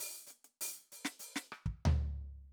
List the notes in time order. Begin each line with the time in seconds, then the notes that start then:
0.00 open hi-hat
0.27 closed hi-hat, hi-hat pedal
0.44 closed hi-hat
0.61 open hi-hat
0.92 hi-hat pedal
1.05 snare
1.19 hi-hat pedal
1.36 snare
1.52 cross-stick
1.66 kick
1.85 floor tom